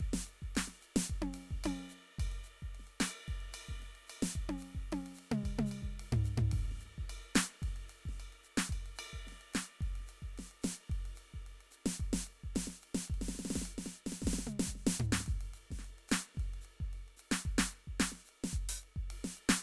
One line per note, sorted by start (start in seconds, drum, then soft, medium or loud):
0.01 kick soft
0.01 ride medium
0.07 kick soft
0.14 snare medium
0.26 hi-hat pedal medium
0.26 ride medium
0.43 kick soft
0.56 snare medium
0.56 ride medium
0.68 snare soft
0.68 ride medium
0.82 hi-hat pedal medium
0.82 ride medium
0.97 snare medium
1.10 kick soft
1.10 ride medium
1.23 open hi-hat soft
1.23 high tom loud
1.34 hi-hat pedal medium
1.34 ride loud
1.52 kick soft
1.57 kick soft
1.65 high tom loud
1.65 ride bell medium
1.90 hi-hat pedal medium
2.19 kick soft
2.19 ride bell medium
2.25 kick soft
2.32 ride medium
2.44 hi-hat pedal medium
2.44 ride medium
2.63 kick soft
2.76 ride medium
2.80 snare soft
2.88 ride medium
3.00 snare medium
3.00 hi-hat pedal soft
3.00 ride bell loud
3.28 kick soft
3.28 snare soft
3.28 ride medium
3.41 ride soft
3.53 hi-hat pedal medium
3.53 ride bell medium
3.69 kick soft
3.69 snare soft
3.77 snare soft
3.80 snare soft
3.83 snare soft
3.83 ride medium
3.96 ride soft
4.08 hi-hat pedal soft
4.08 ride bell medium
4.23 snare medium
4.36 kick soft
4.36 ride medium
4.42 kick soft
4.50 high tom medium
4.59 hi-hat pedal medium
4.63 ride medium
4.76 kick soft
4.82 kick soft
4.93 high tom loud
4.93 ride medium
5.07 ride medium
5.15 hi-hat pedal medium
5.19 ride medium
5.32 mid tom loud
5.44 kick soft
5.44 ride bell medium
5.50 kick soft
5.59 mid tom loud
5.67 hi-hat pedal medium
5.72 ride bell medium
5.83 kick soft
6.00 ride loud
6.13 floor tom loud
6.25 hi-hat pedal medium
6.25 ride medium
6.38 floor tom loud
6.52 kick soft
6.52 ride loud
6.60 kick soft
6.72 snare soft
6.78 snare soft
6.78 hi-hat pedal soft
6.81 snare soft
6.81 ride soft
6.86 snare soft
6.99 kick soft
6.99 snare soft
7.04 kick soft
7.10 ride bell medium
7.36 snare loud
7.36 hi-hat pedal medium
7.36 ride loud
7.63 kick soft
7.63 snare soft
7.63 ride medium
7.68 kick soft
7.68 snare soft
7.74 snare soft
7.74 ride medium
7.77 snare soft
7.89 hi-hat pedal soft
7.89 ride medium
8.06 kick soft
8.06 snare soft
8.15 snare soft
8.19 snare soft
8.19 ride bell medium
8.33 ride soft
8.44 hi-hat pedal medium
8.44 ride soft
8.58 snare medium
8.70 kick soft
8.70 ride bell medium
8.76 kick soft
8.87 ride medium
8.96 hi-hat pedal soft
8.96 ride bell loud
9.14 kick soft
9.28 snare soft
9.28 ride medium
9.33 snare soft
9.42 ride medium
9.53 snare medium
9.53 hi-hat pedal soft
9.53 ride medium
9.79 kick soft
9.79 snare soft
9.79 ride medium
9.88 kick soft
9.94 snare soft
9.94 ride medium
10.01 snare soft
10.07 hi-hat pedal soft
10.07 ride medium
10.23 kick soft
10.39 snare soft
10.39 ride medium
10.52 ride medium
10.63 snare medium
10.63 hi-hat pedal medium
10.63 ride loud
10.90 kick soft
10.90 ride medium
11.06 ride medium
11.16 hi-hat pedal soft
11.16 ride medium
11.35 kick soft
11.47 ride medium
11.61 ride medium
11.72 hi-hat pedal medium
11.72 ride medium
11.87 snare medium
12.00 kick soft
12.00 ride medium
12.07 kick soft
12.14 snare medium
12.24 hi-hat pedal medium
12.24 ride medium
12.44 kick soft
12.56 snare medium
12.56 ride medium
12.68 snare soft
12.68 ride soft
12.81 hi-hat pedal soft
12.81 ride medium
12.95 snare medium
13.09 kick soft
13.09 ride medium
13.15 kick soft
13.15 ride medium
13.22 snare soft
13.29 snare soft
13.36 snare soft
13.36 hi-hat pedal soft
13.40 snare soft
13.46 snare soft
13.51 snare medium
13.56 kick soft
13.56 snare medium
13.62 snare soft
13.62 ride medium
13.79 snare soft
13.87 snare soft
13.91 ride soft
13.96 hi-hat pedal soft
13.96 ride soft
14.07 snare medium
14.13 snare soft
14.23 kick soft
14.23 snare soft
14.28 kick soft
14.28 snare medium
14.34 snare medium
14.39 snare soft
14.48 hi-hat pedal medium
14.48 mid tom medium
14.60 snare medium
14.68 kick soft
14.76 snare soft
14.87 snare medium
15.00 floor tom medium
15.00 hi-hat pedal soft
15.13 snare medium
15.21 snare soft
15.27 kick soft
15.27 ride medium
15.35 kick soft
15.42 ride medium
15.54 hi-hat pedal medium
15.54 ride medium
15.71 kick soft
15.71 snare soft
15.80 snare soft
15.85 ride medium
15.91 snare soft
15.99 ride soft
16.09 snare medium
16.09 hi-hat pedal medium
16.09 ride medium
16.35 kick soft
16.35 snare soft
16.40 snare soft
16.40 ride medium
16.45 kick soft
16.45 snare soft
16.54 ride medium
16.62 hi-hat pedal medium
16.66 ride medium
16.81 kick soft
16.94 ride soft
17.09 ride soft
17.17 hi-hat pedal medium
17.17 ride medium
17.32 snare medium
17.46 kick soft
17.46 ride medium
17.54 kick soft
17.59 snare loud
17.70 hi-hat pedal medium
17.70 ride medium
17.88 kick soft
18.01 snare medium
18.01 ride medium
18.13 snare soft
18.13 ride medium
18.25 hi-hat pedal medium
18.30 ride medium
18.45 snare medium
18.54 kick soft
18.54 ride medium
18.70 open hi-hat loud
18.79 hi-hat pedal medium
18.84 ride soft
18.97 kick soft
19.11 ride loud
19.25 snare medium
19.36 hi-hat pedal medium
19.36 ride medium
19.50 snare loud